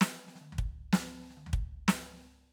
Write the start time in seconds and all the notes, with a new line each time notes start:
0.00 snare, hi-hat pedal
0.28 snare
0.35 snare
0.41 high tom
0.52 floor tom
0.58 kick
0.93 snare
1.22 snare
1.30 snare
1.37 high tom
1.46 floor tom
1.53 kick
1.88 snare